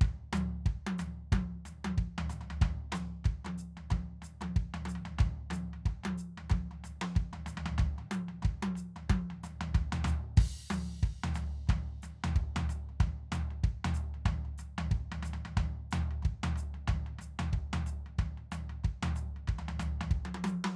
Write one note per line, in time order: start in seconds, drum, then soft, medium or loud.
0.01 kick loud
0.01 floor tom medium
0.33 floor tom loud
0.33 hi-hat pedal medium
0.33 high tom loud
0.66 kick medium
0.66 floor tom soft
0.87 high tom loud
0.98 floor tom medium
0.98 hi-hat pedal medium
1.32 kick medium
1.32 floor tom medium
1.32 high tom loud
1.65 floor tom medium
1.65 hi-hat pedal medium
1.84 floor tom medium
1.84 high tom loud
1.98 kick medium
2.18 floor tom loud
2.30 floor tom medium
2.30 hi-hat pedal medium
2.41 floor tom medium
2.50 floor tom medium
2.61 kick loud
2.61 floor tom loud
2.92 floor tom medium
2.92 hi-hat pedal medium
2.92 high tom loud
3.24 kick medium
3.24 floor tom medium
3.45 floor tom medium
3.45 high tom loud
3.58 hi-hat pedal medium
3.77 floor tom medium
3.90 kick medium
3.90 floor tom medium
3.90 high tom medium
4.22 floor tom medium
4.22 hi-hat pedal medium
4.41 floor tom medium
4.41 high tom loud
4.56 kick medium
4.74 floor tom medium
4.85 hi-hat pedal medium
4.85 high tom medium
4.95 floor tom soft
5.19 kick loud
5.19 floor tom loud
5.50 floor tom medium
5.50 hi-hat pedal medium
5.50 high tom loud
5.73 floor tom soft
5.86 kick medium
5.86 floor tom soft
6.04 floor tom medium
6.04 high tom loud
6.18 hi-hat pedal medium
6.38 floor tom medium
6.50 kick medium
6.50 floor tom medium
6.50 high tom medium
6.71 floor tom soft
6.84 floor tom medium
6.84 hi-hat pedal medium
7.01 high tom loud
7.15 kick medium
7.15 floor tom soft
7.33 floor tom medium
7.46 floor tom medium
7.46 hi-hat pedal medium
7.57 floor tom medium
7.66 floor tom loud
7.78 kick medium
7.78 floor tom medium
7.98 kick soft
7.98 floor tom soft
8.11 hi-hat pedal medium
8.11 high tom loud
8.28 floor tom soft
8.42 kick medium
8.42 floor tom medium
8.62 high tom loud
8.75 floor tom soft
8.75 hi-hat pedal medium
8.96 floor tom medium
9.10 kick medium
9.10 high tom loud
9.30 floor tom soft
9.43 floor tom medium
9.43 hi-hat pedal medium
9.61 floor tom loud
9.75 kick medium
9.75 floor tom medium
9.92 floor tom loud
10.04 floor tom loud
10.04 hi-hat pedal medium
10.37 kick loud
10.37 floor tom medium
10.37 crash medium
10.70 floor tom medium
10.70 hi-hat pedal medium
10.70 high tom loud
11.03 kick medium
11.03 floor tom soft
11.24 floor tom loud
11.34 floor tom medium
11.34 hi-hat pedal medium
11.67 kick medium
11.67 floor tom soft
11.70 floor tom loud
12.02 floor tom medium
12.02 hi-hat pedal medium
12.24 floor tom loud
12.36 kick medium
12.36 floor tom soft
12.56 floor tom loud
12.69 floor tom soft
12.69 hi-hat pedal medium
12.89 floor tom soft
13.00 kick medium
13.00 floor tom medium
13.32 floor tom loud
13.32 hi-hat pedal medium
13.50 floor tom soft
13.64 kick medium
13.64 floor tom soft
13.85 floor tom loud
13.94 floor tom soft
13.94 hi-hat pedal medium
14.14 floor tom soft
14.25 kick medium
14.25 floor tom loud
14.44 kick soft
14.44 floor tom soft
14.58 floor tom soft
14.58 hi-hat pedal medium
14.78 floor tom loud
14.91 kick medium
14.91 floor tom soft
15.12 floor tom medium
15.23 floor tom medium
15.23 hi-hat pedal medium
15.33 floor tom medium
15.45 floor tom medium
15.57 kick medium
15.57 floor tom loud
15.91 floor tom loud
15.91 hi-hat pedal medium
16.11 floor tom soft
16.22 kick medium
16.22 floor tom soft
16.43 floor tom loud
16.56 floor tom soft
16.56 hi-hat pedal medium
16.74 floor tom soft
16.88 kick medium
16.88 floor tom loud
17.06 floor tom soft
17.19 floor tom medium
17.19 hi-hat pedal medium
17.39 floor tom loud
17.53 kick medium
17.53 floor tom soft
17.73 floor tom loud
17.86 floor tom soft
17.86 hi-hat pedal medium
18.06 floor tom soft
18.19 kick medium
18.19 floor tom medium
18.37 floor tom soft
18.52 floor tom medium
18.52 hi-hat pedal medium
18.69 floor tom soft
18.84 kick medium
18.84 floor tom soft
19.03 floor tom loud
19.08 floor tom soft
19.16 floor tom soft
19.16 hi-hat pedal medium
19.36 floor tom soft
19.47 kick medium
19.47 floor tom medium
19.59 floor tom medium
19.68 floor tom medium
19.79 floor tom loud
19.79 hi-hat pedal medium
20.01 floor tom loud
20.11 kick medium
20.15 high tom soft
20.34 high tom loud
20.44 hi-hat pedal medium
20.44 high tom loud
20.64 high tom loud